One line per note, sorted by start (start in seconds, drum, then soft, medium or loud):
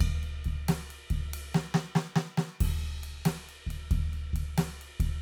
0.01 kick loud
0.01 ride bell loud
0.24 ride soft
0.45 kick medium
0.45 ride medium
0.69 snare loud
0.69 ride loud
0.91 ride medium
1.11 kick loud
1.11 ride medium
1.34 ride loud
1.55 snare loud
1.75 snare loud
1.96 snare loud
2.16 snare loud
2.38 snare loud
2.61 kick loud
2.61 crash loud
3.04 ride medium
3.26 snare loud
3.26 ride loud
3.49 ride medium
3.67 kick medium
3.67 ride medium
3.91 kick loud
3.91 ride medium
4.14 ride soft
4.34 kick medium
4.34 ride medium
4.58 snare loud
4.58 ride loud
4.82 ride medium
5.00 kick loud
5.00 ride medium